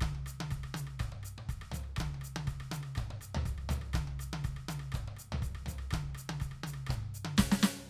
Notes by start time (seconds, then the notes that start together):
0.01 kick, cross-stick, hi-hat pedal, high tom
0.15 high tom
0.26 cross-stick, hi-hat pedal
0.41 high tom
0.51 kick, cross-stick, hi-hat pedal
0.64 cross-stick
0.75 hi-hat pedal, high tom
0.87 cross-stick
1.00 kick, cross-stick, hi-hat pedal, mid tom
1.12 mid tom
1.23 cross-stick, hi-hat pedal
1.38 mid tom
1.49 kick, cross-stick, hi-hat pedal
1.62 cross-stick
1.72 floor tom, hi-hat pedal
1.84 cross-stick
1.97 kick, cross-stick, hi-hat pedal, high tom
2.15 high tom
2.22 cross-stick, hi-hat pedal
2.36 high tom
2.48 kick, cross-stick, hi-hat pedal
2.60 cross-stick
2.72 hi-hat pedal, high tom
2.83 cross-stick
2.96 kick, cross-stick, hi-hat pedal, mid tom
3.11 mid tom
3.21 cross-stick, hi-hat pedal
3.35 floor tom
3.46 kick, cross-stick, hi-hat pedal
3.58 cross-stick
3.69 floor tom, hi-hat pedal
3.82 cross-stick
3.94 kick, cross-stick, hi-hat pedal, high tom
4.08 high tom
4.12 high tom
4.20 cross-stick, hi-hat pedal
4.34 high tom
4.44 kick, cross-stick, hi-hat pedal
4.57 cross-stick
4.69 hi-hat pedal, high tom
4.80 cross-stick
4.92 kick, cross-stick, hi-hat pedal, mid tom
5.08 mid tom
5.17 cross-stick, hi-hat pedal
5.33 floor tom
5.43 kick, cross-stick, hi-hat pedal
5.55 cross-stick
5.66 floor tom, hi-hat pedal
5.79 cross-stick
5.91 kick, cross-stick, hi-hat pedal, high tom
6.10 high tom
6.15 cross-stick, hi-hat pedal
6.30 high tom
6.40 kick, cross-stick, hi-hat pedal
6.52 cross-stick
6.64 hi-hat pedal, high tom
6.74 cross-stick
6.87 kick, cross-stick, hi-hat pedal, mid tom
7.15 hi-hat pedal
7.25 high tom
7.37 kick, snare, hi-hat pedal
7.52 snare
7.61 snare, hi-hat pedal